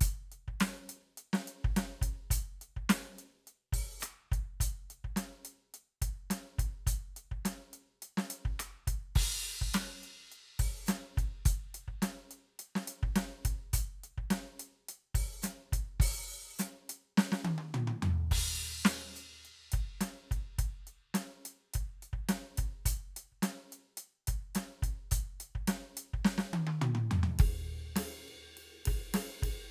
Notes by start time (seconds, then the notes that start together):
0.01 closed hi-hat, kick
0.32 closed hi-hat
0.48 kick
0.60 snare, closed hi-hat
0.89 closed hi-hat
1.18 closed hi-hat
1.33 snare
1.48 closed hi-hat
1.65 kick
1.77 snare, closed hi-hat
2.02 kick, closed hi-hat
2.31 closed hi-hat, kick
2.62 closed hi-hat
2.77 kick
2.90 snare, closed hi-hat
3.19 closed hi-hat
3.47 closed hi-hat
3.73 kick, open hi-hat
4.00 cross-stick, closed hi-hat, hi-hat pedal
4.32 kick, closed hi-hat
4.60 closed hi-hat, kick
4.90 closed hi-hat
5.04 kick
5.16 snare, closed hi-hat
5.45 closed hi-hat
5.74 closed hi-hat
6.02 kick, closed hi-hat
6.30 snare, closed hi-hat
6.59 kick, closed hi-hat
6.87 closed hi-hat, kick
7.17 closed hi-hat
7.32 kick
7.45 snare, closed hi-hat
7.73 closed hi-hat
8.02 closed hi-hat
8.18 snare
8.30 closed hi-hat
8.45 kick
8.60 cross-stick, closed hi-hat
8.87 kick, closed hi-hat
9.16 kick, crash
9.43 closed hi-hat
9.62 kick
9.74 snare, closed hi-hat
10.03 closed hi-hat
10.32 closed hi-hat
10.59 kick, open hi-hat
10.87 snare, closed hi-hat, hi-hat pedal
11.18 kick, closed hi-hat
11.46 closed hi-hat, kick
11.75 closed hi-hat
11.88 kick
12.02 snare, closed hi-hat
12.31 closed hi-hat
12.59 closed hi-hat
12.76 snare
12.88 closed hi-hat
13.03 kick
13.16 snare, closed hi-hat
13.45 kick, closed hi-hat
13.73 closed hi-hat, kick
14.04 closed hi-hat
14.18 kick
14.31 snare, closed hi-hat
14.60 closed hi-hat
14.89 closed hi-hat
15.15 kick, open hi-hat
15.42 snare, closed hi-hat, hi-hat pedal
15.73 kick, closed hi-hat
16.00 open hi-hat, kick
16.59 snare, hi-hat pedal, open hi-hat
16.90 closed hi-hat
17.18 snare
17.32 snare
17.45 high tom
17.58 high tom
17.74 mid tom
17.88 mid tom
18.03 floor tom
18.31 kick, crash
18.60 closed hi-hat
18.85 closed hi-hat, snare
19.16 closed hi-hat
19.45 closed hi-hat
19.72 kick, closed hi-hat
20.01 snare, closed hi-hat
20.31 kick, closed hi-hat
20.59 kick, closed hi-hat
20.87 closed hi-hat
21.14 snare, closed hi-hat
21.45 closed hi-hat
21.74 kick, closed hi-hat
22.03 open hi-hat
22.13 kick
22.29 snare, closed hi-hat
22.58 kick, closed hi-hat
22.86 closed hi-hat, kick
23.17 closed hi-hat
23.32 kick
23.43 snare, closed hi-hat
23.72 closed hi-hat
23.97 closed hi-hat
24.28 kick, closed hi-hat
24.55 snare, closed hi-hat
24.83 kick, closed hi-hat
25.11 closed hi-hat, kick
25.40 closed hi-hat
25.55 kick
25.68 snare, closed hi-hat
25.97 closed hi-hat
26.14 kick
26.25 snare
26.38 snare
26.53 high tom
26.67 high tom
26.82 mid tom
26.95 mid tom
27.11 floor tom
27.23 floor tom
27.39 kick, ride
27.96 snare, ride
28.28 ride
28.57 ride
28.86 kick, ride
29.14 snare, ride
29.43 kick, ride